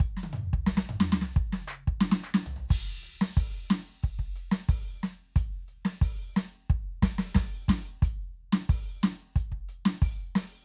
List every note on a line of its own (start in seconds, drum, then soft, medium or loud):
0.01 kick loud
0.01 hi-hat pedal soft
0.18 snare medium
0.24 high tom loud
0.34 hi-hat pedal medium
0.34 mid tom loud
0.54 kick loud
0.67 snare loud
0.67 hi-hat pedal medium
0.78 snare loud
0.90 mid tom loud
1.01 snare loud
1.13 snare loud
1.22 snare loud
1.34 kick loud
1.34 hi-hat pedal medium
1.53 snare loud
1.60 high tom medium
1.68 percussion loud
1.68 hi-hat pedal medium
1.88 kick loud
2.01 snare loud
2.01 hi-hat pedal medium
2.12 snare loud
2.24 percussion medium
2.35 snare loud
2.47 floor tom loud
2.69 kick loud
2.69 hi-hat pedal medium
2.69 crash loud
3.04 closed hi-hat medium
3.22 snare loud
3.38 open hi-hat loud
3.38 kick loud
3.70 closed hi-hat loud
3.70 snare loud
3.70 hi-hat pedal medium
4.03 closed hi-hat medium
4.03 kick medium
4.20 kick medium
4.25 crash soft
4.36 closed hi-hat medium
4.52 snare loud
4.69 open hi-hat loud
4.69 kick loud
4.93 snare soft
5.03 snare loud
5.03 hi-hat pedal soft
5.37 closed hi-hat loud
5.37 kick loud
5.69 closed hi-hat soft
5.86 snare loud
6.02 open hi-hat loud
6.02 kick loud
6.35 closed hi-hat loud
6.35 snare loud
6.35 hi-hat pedal soft
6.71 kick loud
7.03 open hi-hat loud
7.03 kick loud
7.03 snare loud
7.19 open hi-hat loud
7.19 snare loud
7.35 open hi-hat loud
7.35 kick loud
7.35 snare loud
7.69 open hi-hat loud
7.69 kick loud
7.69 snare loud
8.03 closed hi-hat loud
8.03 kick loud
8.53 snare loud
8.70 open hi-hat loud
8.70 kick loud
9.02 closed hi-hat loud
9.02 snare loud
9.02 hi-hat pedal soft
9.37 closed hi-hat medium
9.37 kick loud
9.53 kick medium
9.69 closed hi-hat medium
9.86 snare loud
10.03 open hi-hat loud
10.03 kick loud
10.36 open hi-hat loud
10.36 snare loud